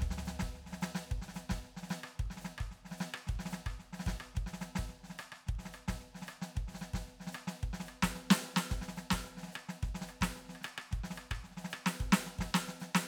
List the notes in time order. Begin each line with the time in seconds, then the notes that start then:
0.01 kick, snare
0.09 kick, snare
0.19 snare
0.26 snare, hi-hat pedal
0.40 kick, snare
0.55 snare
0.62 snare
0.67 snare
0.73 snare
0.82 snare, hi-hat pedal
0.96 snare
1.11 kick, snare
1.18 kick
1.22 snare
1.29 snare
1.35 snare, hi-hat pedal
1.50 kick, snare
1.57 kick
1.65 snare
1.77 snare
1.84 snare
1.90 snare, hi-hat pedal
2.04 cross-stick
2.20 kick, snare
2.26 kick
2.31 snare
2.38 snare
2.42 snare, hi-hat pedal
2.59 kick, cross-stick
2.72 snare
2.78 snare
2.84 snare
2.86 snare
2.92 snare
2.98 snare, hi-hat pedal
3.15 cross-stick
3.28 kick, snare
3.36 kick, snare
3.46 snare
3.51 snare, hi-hat pedal
3.67 kick, cross-stick
3.80 snare
3.86 snare
3.91 snare
3.94 snare
4.00 snare
4.06 kick, snare, hi-hat pedal
4.13 kick
4.21 cross-stick
4.36 kick, snare
4.44 kick, snare
4.54 snare
4.62 snare, hi-hat pedal
4.76 kick, snare
4.85 kick
4.90 snare
4.97 snare
5.03 snare
5.11 snare
5.19 cross-stick, hi-hat pedal
5.33 cross-stick
5.47 kick, snare
5.55 kick, snare
5.59 snare
5.66 snare
5.74 cross-stick, hi-hat pedal
5.89 kick, snare
5.95 kick
6.01 snare
6.07 snare
6.13 snare
6.15 snare
6.22 snare
6.28 cross-stick, hi-hat pedal
6.42 snare
6.56 kick, snare
6.64 snare
6.69 snare
6.75 snare, hi-hat pedal
6.82 snare
6.94 kick, snare
7.08 snare
7.14 snare
7.19 snare
7.21 snare
7.28 snare
7.33 cross-stick, hi-hat pedal
7.48 snare
7.63 kick, snare
7.71 kick, snare
7.81 snare
7.87 cross-stick, hi-hat pedal
8.03 kick, snare
8.16 snare
8.31 snare
8.42 snare, hi-hat pedal
8.57 snare
8.71 kick, snare
8.79 kick, snare
8.89 snare
8.97 snare, hi-hat pedal
9.11 kick, snare
9.17 snare
9.26 snare
9.31 snare
9.36 snare
9.38 snare
9.44 snare
9.49 snare
9.53 cross-stick, hi-hat pedal
9.70 snare
9.84 kick, snare
9.89 kick
9.95 snare
10.02 snare
10.08 cross-stick, hi-hat pedal
10.22 kick, snare
10.37 snare
10.45 snare
10.50 snare
10.56 cross-stick
10.62 cross-stick, snare, hi-hat pedal
10.79 cross-stick
10.92 kick, snare
11.00 kick
11.04 snare
11.11 snare
11.16 cross-stick, hi-hat pedal
11.32 kick, cross-stick
11.37 kick
11.45 snare
11.52 snare
11.58 snare
11.65 snare
11.71 cross-stick, hi-hat pedal
11.87 snare
12.01 kick, snare
12.13 snare
12.22 hi-hat pedal
12.27 snare
12.39 kick, snare
12.55 snare
12.69 snare
12.81 snare, hi-hat pedal
12.96 snare